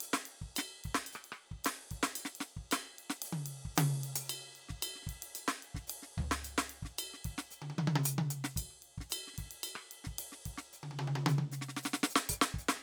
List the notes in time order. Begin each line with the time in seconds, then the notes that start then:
0.01 hi-hat pedal, ride
0.14 snare
0.26 ride
0.42 kick
0.56 snare, hi-hat pedal, ride bell
0.84 kick, ride
0.95 snare
1.07 ride bell
1.13 cross-stick, hi-hat pedal
1.25 ride
1.32 cross-stick
1.52 kick
1.64 snare, hi-hat pedal, ride
1.91 kick, ride
2.03 snare
2.16 hi-hat pedal, ride bell
2.25 snare
2.36 ride
2.41 snare
2.57 kick
2.72 snare, hi-hat pedal, ride bell
2.99 ride
3.10 snare
3.22 hi-hat pedal, ride
3.33 high tom
3.46 ride
3.66 kick
3.76 hi-hat pedal, high tom, ride
4.04 ride
4.16 closed hi-hat
4.21 closed hi-hat
4.30 hi-hat pedal, ride bell
4.56 ride
4.69 kick, snare
4.82 hi-hat pedal, ride bell
4.96 snare
5.03 snare
5.07 kick, snare, ride
5.13 kick
5.23 ride
5.35 hi-hat pedal, ride bell
5.48 snare
5.63 ride
5.75 kick, snare
5.88 hi-hat pedal, ride
6.03 snare
6.18 kick, floor tom
6.24 kick
6.32 snare
6.44 hi-hat pedal, ride bell
6.58 snare
6.70 ride
6.83 kick, snare
6.98 hi-hat pedal, ride bell
7.14 snare
7.25 kick, ride
7.31 kick
7.38 snare
7.51 hi-hat pedal
7.62 high tom
7.70 high tom
7.79 high tom
7.88 high tom
7.96 high tom
8.04 closed hi-hat, hi-hat pedal
8.19 high tom
8.31 closed hi-hat
8.45 snare
8.57 kick, hi-hat pedal, ride bell
8.63 kick
8.69 kick, cross-stick
8.83 ride
8.98 kick, snare
9.10 hi-hat pedal, ride bell
9.28 snare
9.34 snare
9.38 kick, snare, ride
9.44 kick, snare
9.51 ride
9.64 hi-hat pedal, ride bell
9.76 cross-stick
9.92 ride
10.04 kick, snare
10.19 hi-hat pedal, ride
10.32 snare
10.46 kick, ride
10.58 snare
10.73 hi-hat pedal
10.83 high tom
10.91 high tom
10.99 high tom
11.08 high tom
11.16 high tom
11.27 hi-hat pedal, high tom
11.39 high tom
11.52 snare, hi-hat pedal
11.62 snare
11.69 snare
11.77 snare
11.83 snare, hi-hat pedal
11.94 snare
12.04 snare
12.10 hi-hat pedal
12.16 snare
12.29 kick, closed hi-hat, hi-hat pedal
12.36 kick
12.42 snare
12.54 kick
12.59 kick, hi-hat pedal
12.69 snare
12.77 cross-stick